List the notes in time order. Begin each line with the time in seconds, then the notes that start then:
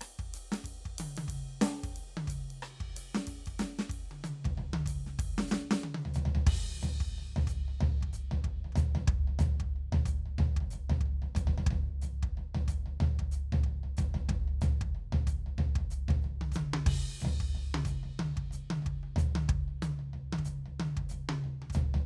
0.01 cross-stick, ride
0.19 kick
0.34 hi-hat pedal, ride
0.52 snare, ride
0.64 kick, ride
0.85 kick
0.98 hi-hat pedal, high tom, ride
1.17 high tom, ride
1.28 kick, ride
1.61 snare, hi-hat pedal, ride
1.84 kick, ride
1.96 ride
2.17 high tom
2.27 kick, hi-hat pedal, ride
2.50 ride
2.62 cross-stick, ride
2.80 kick
2.96 hi-hat pedal, ride
3.15 snare
3.27 kick, ride
3.46 kick, ride
3.59 snare, hi-hat pedal, ride
3.79 snare
3.90 kick, ride
4.11 high tom
4.24 hi-hat pedal, high tom
4.45 kick, floor tom
4.58 floor tom
4.73 high tom
4.86 kick, hi-hat pedal, ride
5.06 snare
5.19 kick, ride
5.38 snare
5.48 snare, hi-hat pedal
5.71 snare
5.84 high tom
5.95 high tom
6.05 floor tom
6.14 floor tom, hi-hat pedal
6.25 floor tom
6.35 floor tom
6.47 kick, crash
6.82 floor tom, hi-hat pedal
7.00 kick
7.18 floor tom
7.36 floor tom
7.47 kick, hi-hat pedal
7.68 floor tom
7.81 floor tom
8.01 kick, floor tom
8.13 floor tom, hi-hat pedal
8.31 floor tom
8.44 kick, floor tom
8.64 floor tom
8.72 kick, floor tom
8.77 hi-hat pedal
8.95 floor tom
9.08 kick, floor tom
9.28 floor tom
9.39 floor tom, hi-hat pedal
9.60 kick, floor tom
9.76 floor tom
9.92 floor tom
10.06 kick, floor tom, hi-hat pedal
10.26 floor tom
10.38 floor tom
10.57 kick, floor tom
10.70 floor tom, hi-hat pedal
10.90 floor tom
11.01 kick
11.06 floor tom
11.22 floor tom
11.35 kick, floor tom, hi-hat pedal
11.47 floor tom
11.58 floor tom
11.67 kick
11.71 floor tom
11.87 kick
12.02 floor tom, hi-hat pedal
12.23 kick, floor tom
12.37 floor tom
12.55 floor tom
12.68 kick, floor tom, hi-hat pedal
12.86 floor tom
13.00 floor tom
13.19 kick, floor tom
13.32 floor tom, hi-hat pedal
13.52 floor tom
13.64 kick, floor tom
13.83 floor tom
13.97 kick, floor tom, hi-hat pedal
14.14 floor tom
14.29 kick, floor tom
14.48 floor tom
14.61 floor tom, hi-hat pedal
14.81 kick, floor tom
14.95 floor tom
15.12 floor tom
15.27 kick, floor tom, hi-hat pedal
15.46 floor tom
15.58 floor tom
15.76 kick, floor tom
15.91 floor tom, hi-hat pedal
16.08 kick, floor tom
16.21 floor tom, hi-hat pedal
16.41 high tom
16.52 kick, hi-hat pedal
16.56 high tom
16.74 high tom
16.86 kick, crash
17.20 floor tom, hi-hat pedal
17.25 floor tom
17.40 kick
17.55 floor tom
17.74 high tom
17.85 kick, floor tom, hi-hat pedal
18.03 floor tom
18.19 high tom
18.36 kick, floor tom
18.51 floor tom, hi-hat pedal
18.70 high tom
18.82 kick, floor tom
19.03 high tom
19.16 kick, floor tom, hi-hat pedal
19.35 high tom
19.48 kick, floor tom
19.68 floor tom
19.82 hi-hat pedal, high tom
19.99 floor tom
20.13 floor tom
20.33 high tom
20.39 kick
20.45 floor tom, hi-hat pedal
20.66 floor tom
20.80 high tom
20.97 kick, floor tom
21.09 floor tom, hi-hat pedal
21.29 high tom
21.36 kick
21.44 floor tom
21.62 high tom
21.70 kick, hi-hat pedal
21.75 floor tom
21.94 floor tom